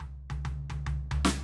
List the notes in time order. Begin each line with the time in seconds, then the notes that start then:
0.05 floor tom, high tom
0.30 floor tom, high tom
0.45 floor tom, high tom
0.70 floor tom, high tom
0.86 floor tom, high tom
1.11 floor tom, high tom
1.25 snare
1.27 snare